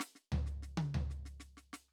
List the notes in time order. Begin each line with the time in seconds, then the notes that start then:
0.00 snare
0.15 snare
0.32 floor tom
0.46 snare
0.62 snare
0.77 high tom
0.94 floor tom
1.10 snare
1.25 snare
1.40 snare
1.57 snare
1.73 snare
1.88 cross-stick